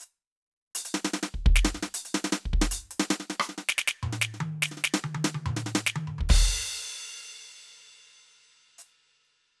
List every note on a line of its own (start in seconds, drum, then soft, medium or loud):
0.00 hi-hat pedal medium
0.75 closed hi-hat loud
0.94 snare loud
1.05 snare loud
1.13 snare loud
1.23 snare medium
1.34 kick medium
1.46 kick loud
1.56 snare loud
1.65 snare loud
1.74 snare medium
1.83 snare medium
1.94 closed hi-hat loud
2.05 closed hi-hat medium
2.14 snare loud
2.24 snare loud
2.32 snare loud
2.45 kick medium
2.53 kick medium
2.61 snare loud
2.71 closed hi-hat loud
2.91 closed hi-hat medium
3.00 snare loud
3.10 snare loud
3.20 snare medium
3.30 snare medium
3.40 cross-stick loud
3.49 snare medium
3.58 snare medium
3.69 snare loud
3.78 snare loud
3.88 snare loud
4.03 mid tom loud
4.12 snare medium
4.21 snare loud
4.34 snare soft
4.40 high tom loud
4.62 snare loud
4.62 hi-hat pedal medium
4.71 snare soft
4.77 snare soft
4.84 snare loud
4.94 snare loud
5.04 high tom loud
5.15 high tom loud
5.24 snare loud
5.34 high tom loud
5.46 mid tom loud
5.56 snare medium
5.66 snare medium
5.75 snare loud
5.86 snare loud
5.96 high tom loud
6.07 mid tom medium
6.18 kick medium
6.18 floor tom medium
6.29 kick loud
6.29 crash loud
6.51 crash soft
8.78 hi-hat pedal medium
9.25 closed hi-hat soft